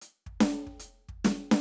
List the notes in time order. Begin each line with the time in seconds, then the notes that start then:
0.02 closed hi-hat
0.26 kick
0.41 closed hi-hat, snare
0.67 kick
0.80 closed hi-hat
1.09 kick
1.24 closed hi-hat, snare
1.51 snare